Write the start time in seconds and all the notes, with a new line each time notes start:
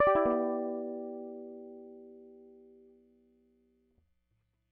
0.00 D5
0.07 G4
0.15 E4
0.26 B3